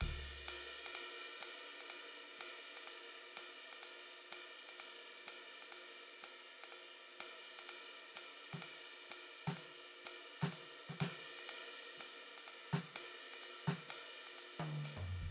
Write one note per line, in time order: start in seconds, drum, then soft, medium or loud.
0.00 kick soft
0.00 ride loud
0.00 crash medium
0.48 hi-hat pedal medium
0.48 ride loud
0.86 ride loud
0.95 ride loud
1.40 hi-hat pedal medium
1.40 ride loud
1.80 ride medium
1.86 hi-hat pedal soft
1.86 ride medium
2.38 hi-hat pedal medium
2.38 ride loud
2.77 ride medium
2.87 ride medium
3.37 hi-hat pedal loud
3.37 ride loud
3.73 ride medium
3.83 ride medium
4.31 hi-hat pedal medium
4.31 ride loud
4.69 ride medium
4.80 ride medium
5.26 hi-hat pedal medium
5.26 ride loud
5.62 ride medium
5.72 ride medium
6.23 hi-hat pedal medium
6.23 ride medium
6.63 ride medium
6.72 ride medium
7.20 hi-hat pedal loud
7.20 ride loud
7.59 ride medium
7.69 ride medium
8.15 hi-hat pedal medium
8.15 ride loud
8.53 snare soft
8.53 ride medium
8.62 hi-hat pedal soft
8.62 ride medium
9.10 hi-hat pedal loud
9.10 ride medium
9.47 snare medium
9.47 ride medium
9.56 hi-hat pedal soft
9.56 ride medium
10.05 hi-hat pedal loud
10.05 ride loud
10.41 snare medium
10.41 ride medium
10.51 hi-hat pedal soft
10.51 ride medium
10.89 snare soft
11.00 snare medium
11.00 hi-hat pedal loud
11.00 ride loud
11.39 ride medium
11.49 ride loud
11.97 snare soft
11.97 hi-hat pedal loud
11.97 ride medium
12.38 ride medium
12.45 hi-hat pedal soft
12.45 ride medium
12.73 snare medium
12.95 hi-hat pedal loud
12.95 ride loud
13.33 ride medium
13.43 ride medium
13.67 snare medium
13.88 hi-hat pedal loud
13.88 ride loud
14.27 ride medium
14.32 hi-hat pedal soft
14.38 ride medium
14.59 high tom medium
14.84 hi-hat pedal loud
14.84 ride medium
14.97 floor tom medium
15.21 kick soft